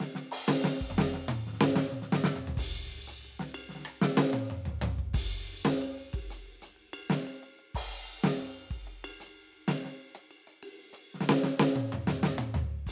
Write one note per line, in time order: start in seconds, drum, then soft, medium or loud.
0.01 snare medium
0.16 snare medium
0.32 crash loud
0.49 snare loud
0.65 snare loud
0.81 kick medium
0.91 mid tom medium
0.99 snare loud
1.15 snare medium
1.29 high tom loud
1.47 snare soft
1.54 snare soft
1.59 snare soft
1.61 snare loud
1.76 snare loud
1.93 high tom medium
2.03 snare soft
2.13 snare loud
2.25 snare loud
2.36 mid tom medium
2.48 floor tom medium
2.58 kick medium
2.58 ride loud
2.79 closed hi-hat soft
2.93 ride soft
3.08 closed hi-hat loud
3.25 ride bell soft
3.40 snare medium
3.55 ride bell loud
3.70 snare soft
3.76 snare soft
3.80 snare soft
3.86 cross-stick medium
3.86 hi-hat pedal loud
4.02 snare loud
4.18 snare loud
4.34 high tom loud
4.51 mid tom medium
4.66 floor tom loud
4.79 hi-hat pedal soft
4.79 floor tom loud
4.99 kick soft
4.99 hi-hat pedal soft
5.14 kick medium
5.14 ride loud
5.31 closed hi-hat soft
5.38 closed hi-hat soft
5.48 ride medium
5.66 snare loud
5.82 ride bell medium
5.98 closed hi-hat medium
6.14 kick medium
6.14 ride loud
6.31 closed hi-hat loud
6.47 ride soft
6.63 closed hi-hat loud
6.77 ride medium
6.94 ride bell loud
7.10 snare loud
7.28 ride bell medium
7.44 closed hi-hat medium
7.60 closed hi-hat soft
7.75 kick medium
7.75 crash loud
7.91 closed hi-hat medium
8.06 ride soft
8.24 snare loud
8.42 cross-stick soft
8.42 ride medium
8.42 floor tom soft
8.57 closed hi-hat soft
8.71 kick medium
8.71 ride soft
8.88 closed hi-hat medium
9.05 ride bell loud
9.21 closed hi-hat loud
9.35 ride soft
9.53 ride soft
9.69 snare loud
9.69 ride bell loud
9.85 snare soft
10.02 ride soft
10.16 closed hi-hat loud
10.31 ride bell medium
10.48 open hi-hat medium
10.63 ride loud
10.94 hi-hat pedal loud
11.15 snare soft
11.21 snare medium
11.30 snare loud
11.44 snare medium
11.60 snare loud
11.60 hi-hat pedal medium
11.76 high tom loud
11.93 mid tom loud
12.08 snare loud
12.24 snare loud
12.24 hi-hat pedal loud
12.39 high tom loud
12.55 floor tom loud
12.87 kick medium
12.87 ride loud